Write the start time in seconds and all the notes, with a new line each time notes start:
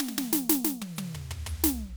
0.01 snare, hi-hat pedal
0.08 snare
0.18 snare
0.33 snare
0.49 snare, hi-hat pedal
0.65 snare
0.82 high tom
0.96 hi-hat pedal, high tom
1.15 floor tom
1.31 floor tom
1.46 floor tom, hi-hat pedal
1.64 open hi-hat, snare
1.69 snare